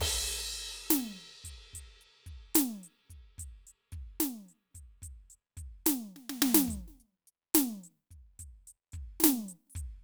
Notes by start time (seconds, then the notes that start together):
0.01 kick, crash
0.07 kick
0.88 closed hi-hat, snare, hi-hat pedal
1.00 snare
1.44 closed hi-hat, kick
1.74 closed hi-hat, kick
2.01 closed hi-hat
2.27 kick, closed hi-hat
2.55 closed hi-hat, snare
2.84 closed hi-hat
3.05 snare
3.10 kick, closed hi-hat
3.39 closed hi-hat, kick
3.67 closed hi-hat
3.92 kick, closed hi-hat
4.20 closed hi-hat, snare
4.45 closed hi-hat, snare
4.71 closed hi-hat, kick, snare
5.02 closed hi-hat, kick
5.30 closed hi-hat
5.57 closed hi-hat, kick
5.86 closed hi-hat, snare
6.16 snare
6.30 snare
6.42 snare
6.55 snare
6.61 snare, hi-hat pedal
6.68 closed hi-hat, kick
6.88 snare
6.94 snare
6.98 snare, closed hi-hat
7.28 closed hi-hat
7.55 open hi-hat, snare, hi-hat pedal
7.63 snare
7.84 closed hi-hat
8.11 kick, closed hi-hat
8.40 closed hi-hat, kick
8.68 closed hi-hat
8.93 closed hi-hat, kick
9.20 snare
9.24 snare
9.49 open hi-hat
9.67 snare, hi-hat pedal
9.76 closed hi-hat, kick